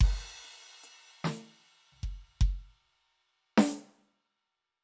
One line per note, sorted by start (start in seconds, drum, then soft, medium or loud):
0.01 kick loud
0.01 hi-hat pedal soft
0.01 crash medium
0.21 kick soft
0.45 closed hi-hat soft
0.84 closed hi-hat medium
1.25 snare loud
1.42 snare soft
1.45 snare soft
1.49 snare soft
1.93 snare soft
1.93 floor tom soft
1.93 ride soft
2.04 kick medium
2.41 kick loud
3.58 snare loud